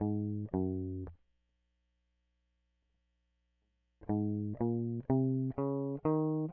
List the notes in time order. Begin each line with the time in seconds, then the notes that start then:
0.03 G#2
0.56 F#2
4.11 G#2
4.63 A#2
5.12 C3
5.60 C#3
6.07 D#3